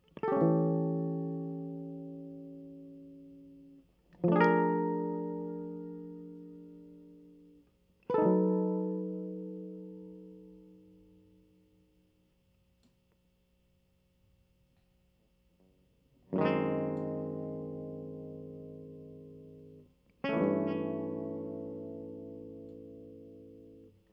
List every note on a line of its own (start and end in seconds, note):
0.23 2.42 A4
0.28 3.80 G4
0.32 3.83 C#4
0.38 1.66 A3
0.42 3.83 E3
4.25 7.62 F3
4.29 6.39 A3
4.29 7.66 D4
4.36 7.61 G#4
4.41 7.46 A#4
8.10 10.78 B4
8.14 11.58 A4
8.18 12.31 D#4
8.24 11.68 F#3
8.24 8.29 A3
16.35 19.91 F#2
16.35 16.68 A#2
16.39 19.88 D#3
16.39 19.86 G#3
16.45 19.86 C4
20.24 23.89 C#4
20.29 23.93 A3
20.34 23.92 E3
20.43 24.02 G2